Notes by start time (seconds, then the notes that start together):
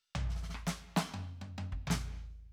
0.15 floor tom
0.29 snare
0.35 snare
0.42 snare
0.49 snare
0.54 cross-stick
0.67 snare
0.96 snare
1.14 high tom
1.41 high tom
1.58 high tom
1.72 kick
1.87 snare, floor tom